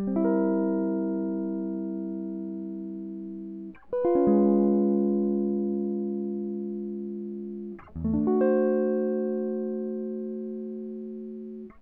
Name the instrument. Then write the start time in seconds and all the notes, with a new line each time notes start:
electric guitar
0.00 G3
0.08 C4
0.17 E4
0.25 A#4
3.93 B4
4.05 F4
4.16 C#4
4.28 G#3
8.05 A3
8.14 D4
8.28 F#4
8.41 C5